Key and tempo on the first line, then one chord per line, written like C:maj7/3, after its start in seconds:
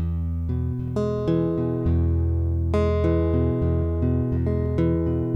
E major, 68 BPM
0.00 E:maj